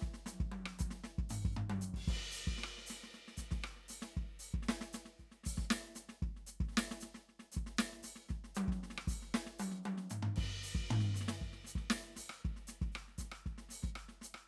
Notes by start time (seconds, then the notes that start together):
0.01 kick, snare
0.14 snare
0.26 snare, hi-hat pedal, high tom
0.40 kick
0.52 high tom
0.66 cross-stick
0.79 kick, hi-hat pedal, high tom
0.91 snare
1.04 snare
1.18 kick
1.29 floor tom, hi-hat pedal
1.45 kick
1.53 floor tom, hi-hat pedal
1.70 high tom
1.81 hi-hat pedal
1.94 kick, ride
2.04 kick, hi-hat pedal
2.09 crash
2.31 hi-hat pedal
2.47 kick, snare
2.58 snare
2.63 cross-stick
2.78 snare
2.86 snare, hi-hat pedal
3.03 snare
3.09 hi-hat pedal
3.14 snare
3.28 snare
3.37 kick, snare, hi-hat pedal
3.51 kick, snare
3.61 cross-stick, hi-hat pedal
3.76 snare
3.88 snare, hi-hat pedal
4.02 snare
4.13 snare, hi-hat pedal
4.17 kick
4.30 snare
4.39 hi-hat pedal
4.54 kick, snare
4.62 snare
4.69 snare
4.81 snare
4.93 snare, hi-hat pedal
5.05 snare
5.18 kick, snare, hi-hat pedal
5.31 snare
5.43 kick, snare, hi-hat pedal
5.57 kick, snare
5.69 snare, hi-hat pedal
5.80 snare
5.83 snare
5.95 snare, hi-hat pedal
6.09 snare
6.22 kick, snare
6.36 snare
6.46 snare, hi-hat pedal
6.60 kick, snare
6.68 snare, hi-hat pedal
6.73 snare
6.77 snare
6.91 snare
7.00 snare, hi-hat pedal
7.14 snare
7.29 snare
7.39 snare
7.52 snare, hi-hat pedal
7.57 kick
7.66 snare
7.77 snare, hi-hat pedal
7.93 snare
8.02 kick, snare, hi-hat pedal
8.16 snare
8.27 kick, snare, hi-hat pedal
8.44 snare
8.55 hi-hat pedal, high tom
8.68 kick, snare
8.83 snare
8.90 snare
8.98 cross-stick
9.07 kick, snare, hi-hat pedal
9.22 snare
9.32 snare, hi-hat pedal
9.46 snare
9.59 hi-hat pedal, high tom
9.71 snare
9.83 hi-hat pedal, high tom
9.97 snare
10.10 floor tom, hi-hat pedal
10.22 floor tom
10.36 kick, crash
10.63 hi-hat pedal
10.75 kick
10.89 floor tom, hi-hat pedal
11.00 snare
11.14 snare, hi-hat pedal
11.21 snare
11.28 snare
11.41 kick, snare
11.53 snare
11.64 snare, hi-hat pedal
11.75 kick, snare
11.90 snare, hi-hat pedal
12.02 snare
12.16 kick, snare, hi-hat pedal
12.29 cross-stick
12.44 kick, snare
12.56 snare
12.67 snare, hi-hat pedal
12.81 kick, snare
12.92 cross-stick, hi-hat pedal
13.08 snare
13.18 kick, snare, hi-hat pedal
13.32 cross-stick
13.46 kick, snare
13.58 snare
13.69 snare
13.70 snare, hi-hat pedal
13.82 kick, snare
13.95 cross-stick, hi-hat pedal
14.08 snare
14.21 snare, hi-hat pedal
14.34 cross-stick